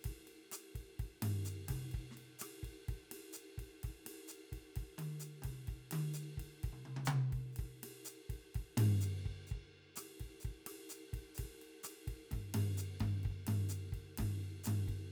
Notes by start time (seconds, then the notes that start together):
0.01 snare, hi-hat pedal, ride
0.06 kick
0.11 kick
0.27 ride
0.52 cross-stick, snare, hi-hat pedal, ride
0.75 kick, ride
0.81 kick
1.00 kick, ride
1.05 kick
1.22 floor tom, ride
1.45 hi-hat pedal
1.68 kick, mid tom, ride
1.76 kick
1.92 kick, ride
2.00 kick
2.11 snare
2.17 ride
2.39 cross-stick, snare, hi-hat pedal, ride
2.63 kick, ride
2.69 kick
2.89 kick, ride
2.95 kick
3.11 snare, ride
3.33 hi-hat pedal, ride
3.58 kick, ride
3.63 kick
3.83 kick, cross-stick, ride
3.90 kick
4.05 snare, ride
4.28 hi-hat pedal, ride
4.52 kick, ride
4.58 kick
4.76 kick, ride
4.83 kick
4.98 high tom, ride
5.20 hi-hat pedal, ride
5.42 kick, mid tom, ride
5.50 kick
5.68 kick, ride
5.74 kick
5.91 high tom, ride
6.14 hi-hat pedal, ride
6.38 kick, ride
6.43 kick
6.64 kick, ride
6.70 kick, mid tom
6.85 mid tom
6.97 mid tom
7.05 hi-hat pedal, mid tom
7.33 kick, ride
7.38 kick
7.53 hi-hat pedal, ride
7.59 kick
7.65 kick
7.83 snare, ride
8.05 hi-hat pedal, ride
8.30 kick, ride
8.35 kick
8.55 kick, ride
8.62 kick
8.77 floor tom, ride
9.01 hi-hat pedal
9.17 snare
9.26 kick
9.31 kick
9.47 hi-hat pedal
9.51 kick
9.57 kick
9.96 cross-stick, snare, hi-hat pedal, ride
10.20 kick, ride
10.26 kick
10.40 hi-hat pedal, ride
10.45 kick
10.51 kick
10.67 cross-stick, ride
10.89 hi-hat pedal, ride
11.13 kick, ride
11.19 kick
11.35 snare, hi-hat pedal, ride
11.39 kick
11.45 kick
11.62 ride
11.84 cross-stick, hi-hat pedal, ride
12.08 kick, ride
12.13 kick
12.31 kick, floor tom, ride
12.39 kick
12.54 floor tom, ride
12.78 hi-hat pedal, ride
13.00 kick, floor tom, ride
13.06 kick
13.24 kick, ride
13.31 kick
13.47 floor tom, ride
13.69 hi-hat pedal, ride
13.93 kick, ride
13.98 kick
14.18 kick, floor tom, ride
14.26 kick
14.64 floor tom, hi-hat pedal, ride
14.88 kick, ride
14.93 kick